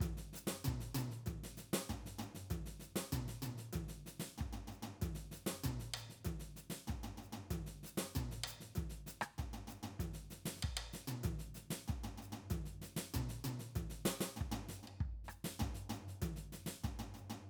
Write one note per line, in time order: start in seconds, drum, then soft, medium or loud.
0.01 kick soft
0.01 high tom loud
0.08 kick soft
0.18 snare soft
0.33 snare soft
0.33 hi-hat pedal medium
0.48 snare medium
0.65 kick soft
0.65 mid tom medium
0.74 kick soft
0.81 snare soft
0.95 hi-hat pedal medium
0.95 mid tom medium
1.11 snare soft
1.27 kick soft
1.27 high tom medium
1.44 snare soft
1.58 snare soft
1.58 hi-hat pedal medium
1.74 snare medium
1.90 kick soft
1.90 floor tom medium
2.06 snare soft
2.19 floor tom medium
2.19 hi-hat pedal soft
2.35 snare soft
2.51 kick soft
2.51 high tom medium
2.57 kick soft
2.66 snare soft
2.80 snare soft
2.80 hi-hat pedal soft
2.96 snare medium
3.13 kick soft
3.13 mid tom medium
3.28 snare soft
3.43 hi-hat pedal medium
3.43 mid tom medium
3.58 snare soft
3.73 kick soft
3.73 high tom loud
3.89 snare soft
4.07 snare soft
4.07 hi-hat pedal medium
4.20 snare medium
4.38 kick soft
4.38 floor tom medium
4.46 kick soft
4.53 floor tom medium
4.68 floor tom medium
4.72 hi-hat pedal soft
4.83 floor tom medium
5.02 kick soft
5.02 high tom medium
5.08 kick soft
5.15 snare soft
5.32 snare soft
5.32 hi-hat pedal soft
5.47 snare medium
5.64 kick soft
5.64 mid tom medium
5.71 kick soft
5.80 snare soft
5.94 hi-hat pedal soft
5.94 mid tom medium
6.10 snare soft
6.25 kick soft
6.25 high tom medium
6.40 snare soft
6.57 snare soft
6.57 hi-hat pedal medium
6.70 snare medium
6.88 kick soft
6.88 floor tom medium
7.04 floor tom medium
7.18 floor tom medium
7.23 hi-hat pedal soft
7.33 floor tom medium
7.51 kick soft
7.51 high tom loud
7.67 snare soft
7.84 snare soft
7.84 hi-hat pedal medium
7.98 snare medium
8.16 kick soft
8.16 mid tom medium
8.23 kick soft
8.32 snare soft
8.44 hi-hat pedal medium
8.44 mid tom medium
8.61 snare soft
8.76 kick soft
8.76 high tom medium
8.90 snare soft
9.07 snare soft
9.07 hi-hat pedal medium
9.22 cross-stick medium
9.39 kick soft
9.39 floor tom medium
9.54 floor tom medium
9.68 floor tom medium
9.68 hi-hat pedal medium
9.83 floor tom medium
10.00 kick soft
10.00 high tom medium
10.06 kick soft
10.14 snare soft
10.31 snare soft
10.31 hi-hat pedal soft
10.46 snare medium
10.57 snare soft
10.63 kick soft
10.63 mid tom medium
10.77 mid tom medium
10.93 snare soft
10.93 hi-hat pedal soft
11.08 mid tom medium
11.24 kick soft
11.24 high tom loud
11.39 snare soft
11.55 snare soft
11.55 hi-hat pedal medium
11.71 snare medium
11.88 kick soft
11.88 floor tom medium
12.04 floor tom medium
12.18 floor tom medium
12.23 hi-hat pedal soft
12.33 floor tom medium
12.51 kick soft
12.51 high tom loud
12.57 kick soft
12.66 snare soft
12.82 snare soft
12.82 hi-hat pedal medium
12.97 snare medium
13.14 kick soft
13.14 mid tom medium
13.22 kick soft
13.29 snare soft
13.45 hi-hat pedal soft
13.45 mid tom medium
13.60 snare soft
13.76 kick soft
13.76 high tom medium
13.82 kick soft
13.90 snare soft
14.06 snare loud
14.06 hi-hat pedal medium
14.21 snare medium
14.37 floor tom medium
14.41 kick soft
14.52 floor tom loud
14.69 snare soft
14.69 hi-hat pedal soft
14.83 floor tom medium
14.88 mid tom soft
15.01 kick soft
15.25 snare soft
15.29 cross-stick soft
15.29 hi-hat pedal soft
15.45 snare medium
15.60 kick soft
15.60 floor tom loud
15.68 kick soft
15.75 snare soft
15.90 floor tom loud
15.90 hi-hat pedal soft
16.08 snare soft
16.22 kick soft
16.22 high tom loud
16.28 kick soft
16.36 snare soft
16.53 snare soft
16.53 hi-hat pedal soft
16.67 snare medium
16.84 kick soft
16.84 floor tom medium
16.99 floor tom medium
17.14 floor tom medium
17.14 hi-hat pedal soft
17.30 floor tom medium